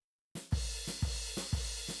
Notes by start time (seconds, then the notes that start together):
0.35 snare
0.51 kick, crash
0.88 snare
1.02 kick, crash
1.37 snare
1.53 kick, crash
1.89 snare